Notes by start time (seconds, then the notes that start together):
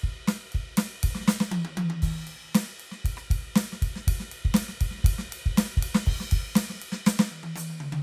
0.01 kick, ride
0.28 snare, hi-hat pedal, ride
0.45 ride
0.53 kick, ride
0.78 snare, ride
1.02 kick, hi-hat pedal, ride
1.15 snare
1.21 snare
1.28 snare, hi-hat pedal
1.41 snare
1.52 high tom
1.65 high tom
1.78 high tom
1.91 high tom
2.03 kick, hi-hat pedal, crash
2.28 ride
2.55 snare, ride
2.78 hi-hat pedal, ride
2.92 snare
3.05 kick, ride
3.18 cross-stick
3.31 kick, ride
3.56 snare, ride
3.73 snare
3.80 kick, hi-hat pedal, ride
3.96 snare
4.08 kick, ride
4.20 snare
4.32 ride
4.45 kick
4.55 snare, ride
4.69 snare
4.81 kick, ride
4.91 snare
4.96 snare
4.99 snare
5.05 kick, ride
5.19 snare
5.33 ride
5.46 kick
5.58 snare, ride
5.78 kick
5.83 ride
5.95 snare
6.06 kick, crash
6.21 snare
6.32 kick, ride
6.56 snare, ride
6.70 snare
6.76 snare
6.82 ride
6.93 snare
7.07 kick, snare, hi-hat pedal
7.20 snare
7.32 high tom
7.44 high tom
7.56 hi-hat pedal, high tom
7.70 high tom
7.81 mid tom
7.93 mid tom